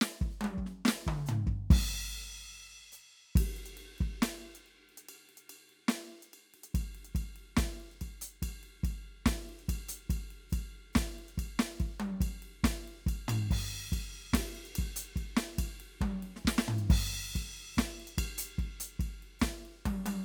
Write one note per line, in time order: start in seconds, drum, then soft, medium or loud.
0.02 snare loud
0.21 kick medium
0.31 hi-hat pedal soft
0.41 high tom loud
0.44 high tom loud
0.58 kick soft
0.66 snare soft
0.85 snare loud
0.88 snare loud
1.07 kick medium
1.07 mid tom loud
1.26 floor tom loud
1.26 hi-hat pedal medium
1.47 kick medium
1.70 kick loud
1.70 crash loud
2.92 hi-hat pedal medium
3.35 kick loud
3.35 hi-hat pedal medium
3.35 ride loud
3.56 ride soft
3.66 closed hi-hat medium
3.77 ride medium
3.98 kick medium
3.98 ride soft
4.22 snare loud
4.22 ride bell medium
4.55 closed hi-hat medium
4.66 ride soft
4.89 ride soft
4.97 closed hi-hat medium
5.09 ride bell medium
5.29 ride soft
5.37 closed hi-hat medium
5.49 ride bell medium
5.69 ride soft
5.88 snare loud
5.88 ride bell medium
6.22 closed hi-hat medium
6.33 ride bell soft
6.54 ride soft
6.63 closed hi-hat medium
6.74 kick medium
6.74 ride bell medium
6.95 ride soft
7.04 closed hi-hat medium
7.15 kick medium
7.15 ride bell medium
7.36 ride soft
7.57 kick medium
7.57 snare loud
7.57 ride bell medium
7.80 ride soft
7.91 closed hi-hat soft
8.01 kick soft
8.01 ride bell medium
8.21 closed hi-hat medium
8.42 kick medium
8.42 ride bell medium
8.63 ride soft
8.83 kick medium
8.83 ride bell medium
9.26 kick medium
9.26 snare loud
9.26 ride medium
9.49 ride soft
9.59 closed hi-hat soft
9.68 kick medium
9.68 ride bell medium
9.88 closed hi-hat loud
10.10 kick medium
10.10 ride bell medium
10.30 ride soft
10.49 kick medium
10.49 hi-hat pedal soft
10.49 ride bell medium
10.75 ride soft
10.93 kick medium
10.93 snare loud
10.93 hi-hat pedal soft
10.97 ride bell medium
11.18 ride soft
11.28 closed hi-hat soft
11.37 kick medium
11.37 ride bell medium
11.59 snare loud
11.80 kick medium
11.80 ride bell soft
12.00 high tom loud
12.20 kick medium
12.20 ride bell medium
12.42 ride medium
12.64 kick medium
12.64 snare loud
12.64 ride bell medium
12.87 ride soft
13.06 kick medium
13.06 ride bell medium
13.28 floor tom loud
13.28 ride bell loud
13.51 kick medium
13.51 crash loud
13.92 kick medium
13.92 ride bell medium
14.14 ride soft
14.33 kick medium
14.33 snare loud
14.33 ride loud
14.55 ride soft
14.65 closed hi-hat medium
14.75 kick medium
14.75 ride bell loud
14.96 closed hi-hat loud
15.16 kick medium
15.16 ride bell medium
15.37 snare loud
15.58 kick medium
15.58 ride bell loud
15.80 ride medium
16.01 kick medium
16.01 high tom loud
16.22 ride soft
16.36 snare soft
16.45 kick medium
16.45 snare loud
16.58 snare loud
16.68 floor tom loud
16.78 closed hi-hat medium
16.90 kick loud
16.90 crash loud
17.33 kick medium
17.33 hi-hat pedal medium
17.33 ride bell medium
17.57 ride soft
17.74 kick medium
17.74 hi-hat pedal medium
17.78 snare loud
17.78 ride bell medium
18.00 ride soft
18.07 closed hi-hat medium
18.18 kick medium
18.18 ride bell loud
18.38 closed hi-hat loud
18.58 kick medium
18.58 ride soft
18.80 closed hi-hat loud
18.99 kick medium
18.99 ride bell medium
19.22 ride soft
19.39 kick medium
19.39 snare loud
19.39 hi-hat pedal medium
19.44 ride bell medium
19.65 ride soft
19.85 kick medium
19.85 high tom loud
19.85 ride medium
20.06 high tom loud
20.06 ride bell medium